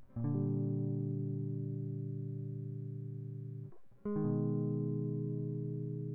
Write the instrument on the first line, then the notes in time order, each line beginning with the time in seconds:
electric guitar
0.17 A#2
0.25 D3
0.34 G3
4.06 G#3
4.16 D#3
4.25 B2